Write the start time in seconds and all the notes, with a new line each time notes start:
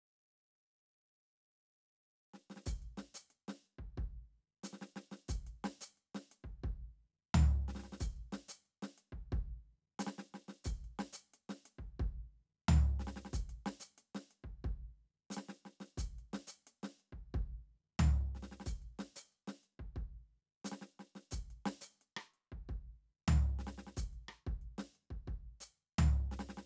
2.34 snare
2.50 snare
2.56 snare
2.66 kick, hi-hat pedal
2.82 open hi-hat
2.97 snare
3.14 hi-hat pedal
3.30 closed hi-hat
3.48 snare
3.66 closed hi-hat
3.78 kick
3.98 kick
4.63 snare, hi-hat pedal
4.73 snare
4.81 snare
4.96 snare
5.11 snare
5.28 kick, hi-hat pedal
5.47 closed hi-hat
5.64 snare
5.81 hi-hat pedal
5.97 closed hi-hat
6.15 snare
6.31 closed hi-hat
6.44 kick
6.64 kick
7.34 floor tom
7.68 snare
7.75 snare
7.78 snare
7.84 snare
7.92 snare
8.00 kick, hi-hat pedal
8.16 closed hi-hat
8.32 snare
8.48 hi-hat pedal
8.65 closed hi-hat
8.82 snare
8.98 closed hi-hat
9.12 kick
9.32 kick
9.99 snare, hi-hat pedal
10.07 snare
10.18 snare
10.34 snare
10.48 snare
10.64 kick, hi-hat pedal
10.84 closed hi-hat
10.99 snare
11.13 hi-hat pedal
11.34 closed hi-hat
11.49 snare
11.65 closed hi-hat
11.78 kick
11.99 kick
12.68 floor tom
12.99 snare
13.07 snare
13.16 snare
13.25 snare
13.33 kick, hi-hat pedal
13.49 closed hi-hat
13.66 snare
13.80 hi-hat pedal
13.98 closed hi-hat
14.15 snare
14.31 closed hi-hat
14.44 kick
14.64 kick
15.30 snare, hi-hat pedal
15.37 snare
15.49 snare
15.65 snare
15.80 snare
15.98 kick, hi-hat pedal
16.18 closed hi-hat
16.33 snare
16.47 hi-hat pedal
16.67 closed hi-hat
16.83 snare
17.00 closed hi-hat
17.12 kick
17.34 kick
17.99 floor tom
18.35 snare
18.43 snare
18.51 snare
18.60 snare
18.66 kick, hi-hat pedal
18.82 closed hi-hat
18.99 snare
19.16 hi-hat pedal
19.32 closed hi-hat
19.48 snare
19.63 closed hi-hat
19.79 kick
19.96 kick
20.64 snare, hi-hat pedal
20.72 snare
20.81 snare
20.99 snare
21.15 snare
21.31 kick, hi-hat pedal
21.50 closed hi-hat
21.66 snare
21.81 hi-hat pedal
22.01 closed hi-hat
22.17 cross-stick
22.34 closed hi-hat
22.52 kick
22.69 kick
23.28 floor tom
23.59 snare
23.67 snare
23.78 snare
23.87 snare
23.97 kick, hi-hat pedal
24.13 closed hi-hat
24.28 cross-stick
24.47 kick
24.61 closed hi-hat
24.78 snare
24.95 closed hi-hat
25.10 kick
25.28 kick
25.60 hi-hat pedal
25.98 floor tom
26.31 snare
26.39 snare
26.49 snare
26.57 snare